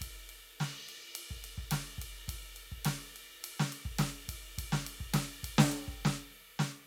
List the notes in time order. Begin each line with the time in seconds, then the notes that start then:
0.01 kick, ride
0.29 ride
0.60 snare, ride
0.89 ride
1.15 ride
1.31 kick
1.44 ride
1.58 kick
1.71 snare, ride
1.98 kick, ride
2.28 kick, ride
2.56 ride
2.72 kick
2.85 snare, ride
3.16 ride
3.44 ride
3.59 snare
3.72 ride
3.85 kick
3.99 snare, ride
4.28 kick, ride
4.58 kick, ride
4.72 snare
4.87 ride
5.00 kick
5.14 snare, ride
5.43 kick, ride
5.58 snare
5.72 ride
5.88 kick
6.05 snare
6.59 snare